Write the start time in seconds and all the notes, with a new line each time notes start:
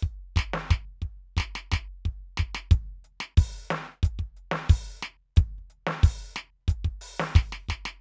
0.01 kick, hi-hat pedal
0.37 kick, snare
0.39 snare
0.54 snare
0.71 kick, snare
1.03 kick, snare
1.37 kick, snare
1.41 snare
1.56 snare
1.72 kick, snare
1.74 snare
2.06 kick
2.38 kick, snare
2.55 snare
2.72 closed hi-hat, kick
3.05 closed hi-hat
3.21 snare
3.38 open hi-hat, kick
3.69 closed hi-hat, snare, hi-hat pedal
4.04 closed hi-hat, kick
4.20 kick
4.37 closed hi-hat
4.52 snare
4.70 open hi-hat, kick
5.02 snare, hi-hat pedal
5.37 closed hi-hat, kick
5.59 kick
5.71 closed hi-hat
5.87 snare
5.93 snare
6.04 open hi-hat, kick
6.35 closed hi-hat, snare, hi-hat pedal
6.69 closed hi-hat, kick
6.85 kick
7.02 open hi-hat
7.20 snare
7.36 kick, snare
7.53 snare
7.69 kick, snare, hi-hat pedal
7.86 snare